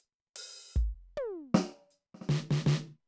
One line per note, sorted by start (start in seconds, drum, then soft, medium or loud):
0.00 closed hi-hat soft
0.36 open hi-hat loud
0.73 kick medium
0.73 hi-hat pedal soft
1.17 closed hi-hat soft
1.17 high tom loud
1.54 snare loud
1.90 hi-hat pedal soft
2.14 snare soft
2.21 snare soft
2.29 snare loud
2.51 snare medium
2.66 snare loud